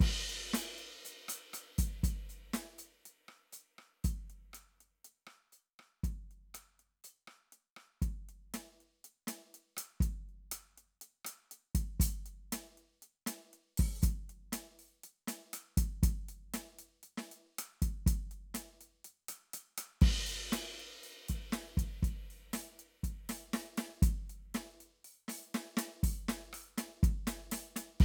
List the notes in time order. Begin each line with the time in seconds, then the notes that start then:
0.01 kick, crash
0.30 open hi-hat
0.54 open hi-hat, snare
0.79 open hi-hat
1.06 open hi-hat
1.29 closed hi-hat, cross-stick
1.54 closed hi-hat, cross-stick
1.79 closed hi-hat, kick
2.04 closed hi-hat, kick
2.30 open hi-hat
2.54 open hi-hat, snare
2.79 open hi-hat
3.06 open hi-hat
3.29 cross-stick
3.53 open hi-hat
3.79 cross-stick
4.05 closed hi-hat, kick
4.30 closed hi-hat
4.54 cross-stick, closed hi-hat
4.81 closed hi-hat
5.05 closed hi-hat
5.27 cross-stick
5.53 closed hi-hat
5.80 cross-stick
6.04 kick, closed hi-hat
6.31 closed hi-hat
6.55 cross-stick, closed hi-hat
6.80 closed hi-hat
7.05 closed hi-hat
7.28 cross-stick
7.53 closed hi-hat
7.77 cross-stick
8.02 kick, closed hi-hat
8.29 closed hi-hat
8.54 snare, closed hi-hat
8.81 closed hi-hat
9.05 closed hi-hat
9.28 snare, closed hi-hat
9.55 closed hi-hat
9.77 cross-stick, closed hi-hat
10.01 kick, closed hi-hat
10.29 closed hi-hat
10.52 cross-stick, closed hi-hat
10.78 closed hi-hat
11.02 closed hi-hat
11.25 cross-stick, closed hi-hat
11.52 closed hi-hat
11.75 kick, closed hi-hat
12.00 closed hi-hat, kick
12.26 closed hi-hat
12.53 snare, closed hi-hat
12.78 closed hi-hat
13.03 closed hi-hat
13.27 snare, closed hi-hat
13.54 closed hi-hat
13.78 kick, open hi-hat
14.03 kick, closed hi-hat, hi-hat pedal
14.30 closed hi-hat
14.53 snare, open hi-hat
14.80 open hi-hat
15.04 open hi-hat
15.28 snare, open hi-hat
15.54 cross-stick, open hi-hat
15.78 kick, closed hi-hat
16.03 kick, open hi-hat
16.29 open hi-hat
16.54 snare, open hi-hat
16.79 open hi-hat
17.04 open hi-hat
17.18 snare
17.32 open hi-hat
17.59 cross-stick, closed hi-hat
17.82 kick, closed hi-hat
18.07 kick, closed hi-hat
18.32 open hi-hat
18.55 snare, open hi-hat
18.81 open hi-hat
19.05 open hi-hat
19.29 cross-stick, open hi-hat
19.54 cross-stick, open hi-hat
19.78 cross-stick, closed hi-hat
20.02 kick, crash
20.27 open hi-hat
20.53 snare, open hi-hat
20.80 open hi-hat
21.04 open hi-hat
21.29 kick, open hi-hat
21.53 snare, closed hi-hat
21.78 kick, closed hi-hat
21.82 kick
22.03 kick, open hi-hat
22.31 open hi-hat
22.54 snare, open hi-hat
22.80 closed hi-hat
23.04 kick, open hi-hat
23.30 snare, open hi-hat
23.54 snare, open hi-hat
23.78 snare, open hi-hat
24.03 kick, open hi-hat
24.30 open hi-hat
24.55 snare, open hi-hat
24.81 open hi-hat
25.05 open hi-hat
25.29 open hi-hat, snare
25.55 snare, open hi-hat
25.77 snare, closed hi-hat
26.04 kick, open hi-hat
26.29 snare, open hi-hat
26.53 cross-stick, open hi-hat
26.78 snare, closed hi-hat
27.04 kick, closed hi-hat
27.28 snare, open hi-hat
27.52 snare, open hi-hat
27.76 snare, open hi-hat
28.01 kick, crash